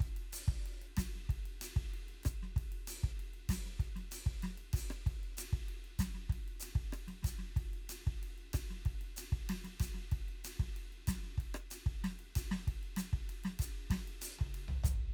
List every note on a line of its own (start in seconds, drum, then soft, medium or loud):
0.01 kick medium
0.01 ride medium
0.17 ride medium
0.33 hi-hat pedal loud
0.33 ride medium
0.49 kick medium
0.49 snare soft
0.67 ride medium
0.82 ride medium
0.98 kick medium
0.98 snare medium
0.98 hi-hat pedal medium
0.98 ride loud
1.16 snare soft
1.30 kick soft
1.30 ride medium
1.46 ride medium
1.62 hi-hat pedal medium
1.62 ride loud
1.77 kick medium
1.77 snare soft
1.94 ride medium
2.09 ride soft
2.24 kick medium
2.24 cross-stick medium
2.24 hi-hat pedal medium
2.24 ride medium
2.43 snare soft
2.57 kick medium
2.57 ride medium
2.73 ride medium
2.88 hi-hat pedal loud
2.88 ride medium
3.04 kick medium
3.04 snare soft
3.20 ride medium
3.34 ride soft
3.50 kick soft
3.50 snare medium
3.50 hi-hat pedal medium
3.50 ride loud
3.66 snare soft
3.80 kick soft
3.80 ride medium
3.96 snare soft
3.96 ride soft
4.12 hi-hat pedal medium
4.12 ride medium
4.27 kick medium
4.43 snare medium
4.43 ride medium
4.58 ride medium
4.74 kick medium
4.74 hi-hat pedal medium
4.74 ride medium
4.91 cross-stick medium
5.07 kick medium
5.07 ride medium
5.24 ride soft
5.38 hi-hat pedal loud
5.38 ride loud
5.53 kick soft
5.69 ride medium
5.85 ride soft
6.00 kick soft
6.00 snare medium
6.00 hi-hat pedal loud
6.00 ride medium
6.15 snare soft
6.30 kick soft
6.30 snare soft
6.30 ride medium
6.49 ride soft
6.61 hi-hat pedal loud
6.61 ride medium
6.76 kick medium
6.93 cross-stick medium
6.93 ride medium
7.08 snare soft
7.08 ride medium
7.23 kick soft
7.23 snare soft
7.23 hi-hat pedal loud
7.23 ride medium
7.39 snare soft
7.57 kick medium
7.57 ride medium
7.74 ride soft
7.90 hi-hat pedal loud
7.90 ride loud
8.07 kick soft
8.07 snare soft
8.24 ride medium
8.39 ride soft
8.54 kick soft
8.54 cross-stick medium
8.54 hi-hat pedal medium
8.54 ride loud
8.71 snare soft
8.86 kick soft
8.86 ride medium
9.02 ride medium
9.17 hi-hat pedal loud
9.17 ride loud
9.33 kick soft
9.50 snare medium
9.50 ride loud
9.65 snare soft
9.65 ride medium
9.81 kick soft
9.81 snare soft
9.81 hi-hat pedal medium
9.81 ride loud
9.95 snare soft
10.12 kick soft
10.12 ride medium
10.29 ride soft
10.45 hi-hat pedal loud
10.45 ride loud
10.60 kick soft
10.60 snare soft
10.77 ride medium
10.93 ride soft
11.08 kick soft
11.08 snare medium
11.08 hi-hat pedal loud
11.08 ride medium
11.24 snare soft
11.38 kick soft
11.38 ride medium
11.55 cross-stick medium
11.71 hi-hat pedal medium
11.71 ride medium
11.87 kick medium
12.05 snare medium
12.05 ride medium
12.20 ride medium
12.36 kick soft
12.36 hi-hat pedal medium
12.36 ride loud
12.52 snare medium
12.68 kick soft
12.68 ride medium
12.84 ride soft
12.97 snare medium
12.97 hi-hat pedal loud
12.97 ride medium
13.14 kick medium
13.30 ride medium
13.45 snare medium
13.45 ride medium
13.60 kick soft
13.60 hi-hat pedal loud
13.60 ride medium
13.91 kick soft
13.91 snare medium
13.91 ride medium
14.08 ride medium
14.22 hi-hat pedal loud
14.22 ride loud
14.39 kick soft
14.39 high tom medium
14.55 ride medium
14.69 floor tom medium
14.84 kick medium
14.84 floor tom loud
14.84 hi-hat pedal loud